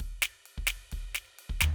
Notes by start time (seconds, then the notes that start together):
0.00 kick, ride
0.22 snare, ride
0.45 ride
0.58 kick
0.67 snare, ride
0.92 kick, ride
1.15 snare, ride
1.25 snare
1.38 ride
1.49 kick
1.60 snare, floor tom